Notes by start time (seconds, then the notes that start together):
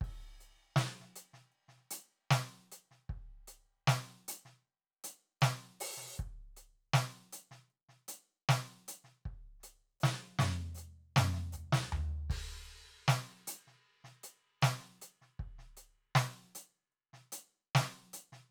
0.01 kick, crash
0.26 snare
0.40 closed hi-hat
0.76 snare
1.00 snare
1.16 closed hi-hat
1.33 snare
1.52 closed hi-hat
1.68 snare
1.77 snare
1.91 closed hi-hat
2.31 snare
2.51 snare
2.72 closed hi-hat
2.91 snare
3.09 kick
3.47 closed hi-hat
3.87 snare
4.06 snare
4.28 closed hi-hat
4.45 snare
5.04 closed hi-hat
5.41 snare, hi-hat pedal
5.62 snare
5.73 snare
5.80 open hi-hat
5.97 snare
6.02 snare
6.05 snare
6.09 snare
6.16 kick, hi-hat pedal
6.21 snare
6.57 closed hi-hat
6.93 snare
7.33 closed hi-hat
7.51 snare
7.70 closed hi-hat
7.89 snare
8.08 closed hi-hat
8.49 snare
8.67 snare
8.88 closed hi-hat
9.04 snare
9.25 kick
9.60 open hi-hat, snare
10.00 snare, hi-hat pedal
10.39 snare, mid tom
10.75 closed hi-hat, hi-hat pedal
11.16 snare, mid tom
11.33 snare
11.52 floor tom, hi-hat pedal
11.72 snare
11.92 floor tom
12.30 kick, crash
12.52 snare
12.69 open hi-hat
13.08 snare
13.29 snare
13.47 closed hi-hat
13.67 snare
14.04 snare
14.23 closed hi-hat
14.62 snare, hi-hat pedal
14.80 snare
15.02 closed hi-hat
15.21 snare
15.37 kick, closed hi-hat
15.58 snare
15.77 closed hi-hat
16.15 snare
16.55 closed hi-hat
16.92 closed hi-hat
17.13 snare
17.32 closed hi-hat
17.75 snare
17.80 snare
18.13 closed hi-hat
18.32 snare